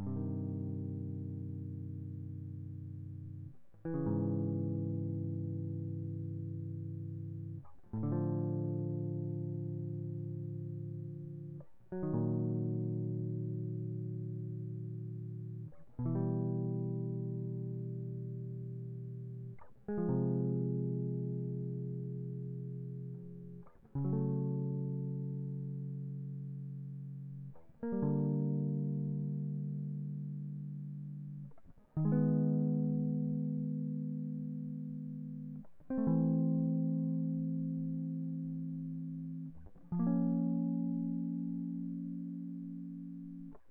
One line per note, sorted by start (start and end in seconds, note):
0.00 3.49 G2
0.07 3.52 C3
0.17 3.54 D#3
3.86 7.63 E3
3.95 7.64 C#3
4.08 7.62 G#2
7.95 11.21 A2
8.04 11.64 D3
8.12 11.62 F3
11.93 15.68 F#3
12.03 15.72 D#3
12.15 15.70 A#2
16.00 19.56 B2
16.06 19.54 E3
16.15 19.57 G3
19.89 23.66 G#3
19.98 23.65 F3
20.10 23.59 C3
23.96 27.54 C#3
24.05 27.52 F#3
24.13 26.59 A3
27.83 31.50 A#3
27.93 31.48 G3
28.03 31.51 D3
31.97 35.64 D#3
32.05 35.65 G#3
32.12 35.64 B3
35.90 39.54 C4
35.98 39.23 A3
36.08 39.54 E3
39.93 43.53 F3
40.00 43.51 A#3
40.07 43.54 C#4